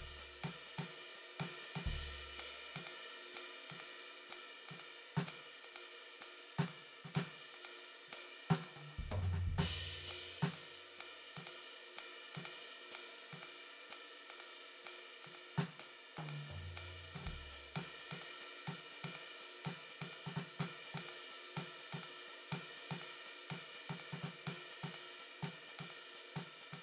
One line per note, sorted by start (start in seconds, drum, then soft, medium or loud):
0.19 hi-hat pedal loud
0.41 snare soft
0.41 hi-hat pedal soft
0.41 ride loud
0.66 hi-hat pedal medium
0.78 snare soft
0.78 ride loud
0.89 hi-hat pedal soft
0.89 ride soft
1.15 hi-hat pedal medium
1.38 snare soft
1.38 hi-hat pedal soft
1.38 ride loud
1.62 hi-hat pedal medium
1.75 snare soft
1.75 ride loud
1.85 kick soft
1.85 ride medium
2.38 hi-hat pedal loud
2.38 ride loud
2.75 snare soft
2.75 ride loud
2.87 ride loud
3.34 hi-hat pedal loud
3.34 ride loud
3.70 snare soft
3.70 ride medium
3.80 hi-hat pedal soft
3.80 ride medium
4.29 hi-hat pedal loud
4.29 ride loud
4.69 snare soft
4.69 ride medium
4.76 hi-hat pedal soft
4.76 ride medium
5.17 snare medium
5.26 hi-hat pedal loud
5.26 ride loud
5.48 hi-hat pedal soft
5.64 ride medium
5.72 hi-hat pedal soft
5.72 ride medium
6.21 hi-hat pedal loud
6.21 ride medium
6.42 hi-hat pedal soft
6.58 snare medium
6.58 ride medium
6.67 hi-hat pedal soft
6.67 ride medium
7.04 snare soft
7.14 snare medium
7.14 hi-hat pedal loud
7.14 ride loud
7.54 ride medium
7.62 hi-hat pedal soft
7.62 ride medium
8.07 snare soft
8.12 hi-hat pedal loud
8.12 ride loud
8.34 hi-hat pedal soft
8.50 snare medium
8.59 hi-hat pedal soft
8.64 ride medium
8.76 high tom soft
8.90 high tom soft
8.98 kick soft
9.10 floor tom medium
9.10 hi-hat pedal loud
9.22 snare soft
9.33 snare soft
9.47 kick soft
9.55 snare medium
9.55 hi-hat pedal soft
9.55 ride medium
9.96 snare soft
10.08 hi-hat pedal loud
10.08 ride medium
10.42 snare medium
10.42 ride medium
10.54 hi-hat pedal soft
10.54 ride medium
10.76 hi-hat pedal soft
10.98 hi-hat pedal medium
10.98 ride loud
11.37 snare soft
11.37 ride medium
11.41 hi-hat pedal soft
11.47 ride medium
11.96 hi-hat pedal medium
11.96 ride loud
12.35 snare soft
12.35 ride medium
12.45 ride loud
12.91 hi-hat pedal loud
12.91 ride loud
13.32 snare soft
13.32 hi-hat pedal soft
13.32 ride medium
13.43 ride medium
13.90 hi-hat pedal loud
13.90 ride medium
14.30 hi-hat pedal soft
14.30 ride medium
14.40 ride medium
14.84 hi-hat pedal medium
14.84 ride loud
15.24 snare soft
15.24 ride medium
15.31 hi-hat pedal soft
15.31 ride medium
15.58 snare medium
15.79 hi-hat pedal loud
15.79 ride medium
16.17 high tom medium
16.17 ride medium
16.25 hi-hat pedal soft
16.29 ride medium
16.50 floor tom soft
16.76 hi-hat pedal loud
16.76 ride loud
17.15 snare soft
17.15 ride medium
17.20 snare soft
17.20 hi-hat pedal soft
17.23 kick soft
17.23 snare soft
17.23 ride loud
17.27 snare soft
17.52 hi-hat pedal medium
17.73 snare soft
17.73 hi-hat pedal soft
17.73 ride loud
17.98 hi-hat pedal medium
18.11 snare soft
18.11 ride loud
18.21 ride medium
18.41 hi-hat pedal medium
18.66 snare soft
18.66 hi-hat pedal soft
18.66 ride loud
18.91 hi-hat pedal medium
19.04 snare soft
19.04 ride loud
19.15 snare soft
19.15 hi-hat pedal soft
19.15 ride medium
19.40 hi-hat pedal medium
19.64 snare soft
19.64 hi-hat pedal soft
19.64 ride loud
19.89 hi-hat pedal medium
20.01 snare soft
20.01 ride loud
20.12 hi-hat pedal soft
20.12 ride medium
20.26 snare soft
20.36 snare medium
20.36 hi-hat pedal medium
20.59 snare medium
20.59 ride loud
20.84 hi-hat pedal medium
20.94 snare soft
20.94 ride loud
21.07 hi-hat pedal soft
21.07 ride medium
21.30 hi-hat pedal medium
21.53 snare soft
21.53 hi-hat pedal soft
21.57 ride loud
21.78 hi-hat pedal medium
21.92 snare soft
21.92 ride loud
22.02 hi-hat pedal soft
22.02 ride medium
22.27 hi-hat pedal medium
22.52 snare soft
22.52 ride loud
22.76 hi-hat pedal medium
22.91 snare soft
22.91 ride loud
23.00 hi-hat pedal soft
23.00 ride medium
23.26 hi-hat pedal medium
23.50 snare soft
23.50 hi-hat pedal soft
23.50 ride loud
23.74 hi-hat pedal medium
23.89 snare soft
23.89 ride medium
23.97 hi-hat pedal soft
23.97 ride medium
24.12 snare soft
24.21 snare soft
24.21 hi-hat pedal loud
24.44 snare soft
24.44 hi-hat pedal soft
24.44 ride loud
24.70 hi-hat pedal medium
24.83 snare soft
24.83 ride medium
24.93 hi-hat pedal soft
24.93 ride medium
25.19 hi-hat pedal medium
25.42 snare soft
25.42 hi-hat pedal soft
25.42 ride medium
25.67 hi-hat pedal medium
25.79 snare soft
25.79 ride loud
25.90 hi-hat pedal soft
25.90 ride medium
26.14 hi-hat pedal medium
26.36 snare soft
26.36 hi-hat pedal soft
26.36 ride medium
26.61 hi-hat pedal medium
26.72 snare soft
26.72 ride medium